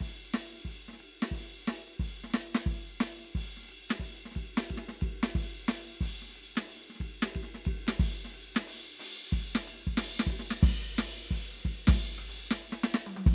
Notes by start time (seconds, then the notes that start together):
0.01 kick, ride
0.34 snare, ride
0.56 ride
0.66 kick, ride
0.89 snare
0.94 snare
1.01 hi-hat pedal, ride
1.23 snare, ride
1.32 kick, ride
1.68 snare, hi-hat pedal, ride
1.89 ride
2.00 kick, ride
2.24 snare
2.31 snare
2.34 snare, hi-hat pedal
2.55 snare
2.67 kick, ride
2.90 ride
3.01 snare, hi-hat pedal, ride
3.25 ride
3.36 kick, ride
3.57 snare
3.63 snare
3.70 hi-hat pedal, ride
3.90 snare, ride
4.00 kick, ride
4.26 snare
4.32 snare, ride
4.37 kick, hi-hat pedal
4.58 snare, ride
4.71 kick, ride
4.78 snare
4.89 snare
4.94 snare
5.02 kick, hi-hat pedal, ride
5.24 snare, ride
5.36 kick, ride
5.69 snare, hi-hat pedal, ride
5.92 ride
6.02 kick, ride
6.22 snare
6.30 snare
6.36 hi-hat pedal, ride
6.56 snare, ride
6.68 ride
6.90 snare
6.96 snare
7.01 kick, hi-hat pedal, ride
7.23 snare, ride
7.36 kick, ride
7.43 snare
7.55 snare
7.66 kick, ride
7.88 snare, ride
8.00 kick, ride
8.25 snare
8.29 snare
8.33 hi-hat pedal, ride
8.56 snare, ride
8.68 ride
9.00 open hi-hat, hi-hat pedal, ride
9.32 kick, ride
9.56 snare
9.62 hi-hat pedal
9.68 ride bell
9.88 kick
9.98 snare, ride
10.20 snare
10.27 kick, ride
10.40 snare
10.51 snare
10.63 kick, crash
10.97 snare, hi-hat pedal, ride
11.21 ride
11.32 kick, ride
11.55 snare
11.60 cross-stick
11.66 kick, hi-hat pedal, ride
11.88 kick, snare, ride
12.19 cross-stick
12.29 hi-hat pedal, ride
12.51 snare
12.73 snare
12.84 snare
12.90 hi-hat pedal
12.95 snare
13.07 high tom
13.17 high tom
13.27 kick, crash